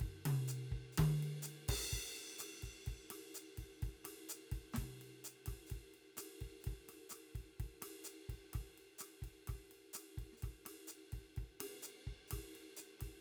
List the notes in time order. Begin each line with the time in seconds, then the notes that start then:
0.01 kick, ride
0.08 kick
0.26 mid tom, ride
0.48 hi-hat pedal
0.72 kick, mid tom, ride
0.78 kick
0.93 hi-hat pedal
0.98 kick, high tom, ride
1.06 kick
1.23 ride
1.43 hi-hat pedal, ride
1.69 kick, ride, crash
1.93 kick, ride
2.17 ride
2.39 cross-stick, hi-hat pedal, ride
2.63 kick, ride
2.69 kick
2.84 hi-hat pedal, ride
2.88 kick
2.93 kick
3.11 cross-stick, ride
3.35 hi-hat pedal, ride
3.58 kick, ride
3.64 kick
3.83 kick, ride
3.89 kick
4.05 cross-stick, ride
4.30 hi-hat pedal, ride
4.52 kick, ride
4.58 kick
4.73 snare, hi-hat pedal, mid tom, ride
4.78 kick
4.84 kick
5.02 ride
5.25 hi-hat pedal, ride
5.47 kick, cross-stick, ride
5.54 kick
5.67 hi-hat pedal, ride
5.72 kick
5.77 kick
5.94 ride
6.18 cross-stick, hi-hat pedal, ride
6.41 kick, ride
6.47 kick
6.61 hi-hat pedal, ride
6.67 kick
6.73 kick
6.89 cross-stick, ride
7.10 cross-stick, hi-hat pedal, ride
7.36 kick, ride
7.41 kick
7.60 kick, ride
7.66 kick
7.82 cross-stick, snare, ride
8.05 hi-hat pedal, ride
8.30 kick, ride
8.35 kick
8.54 kick, cross-stick, ride
8.61 kick
8.78 ride
8.99 cross-stick, snare, hi-hat pedal, ride
9.23 kick, ride
9.28 kick
9.48 kick, cross-stick, ride
9.55 kick
9.72 ride
9.94 cross-stick, hi-hat pedal, ride
10.18 kick, ride
10.23 kick
10.33 snare
10.38 hi-hat pedal
10.43 kick, cross-stick, ride
10.49 kick
10.66 cross-stick, ride
10.88 hi-hat pedal, ride
11.13 kick, ride
11.19 kick
11.37 kick, ride
11.44 kick
11.61 cross-stick, ride
11.83 hi-hat pedal
12.07 kick
12.13 kick
12.28 cross-stick, snare, hi-hat pedal, ride
12.33 kick
12.39 kick
12.56 ride
12.77 hi-hat pedal, ride
13.00 kick, cross-stick, ride
13.08 kick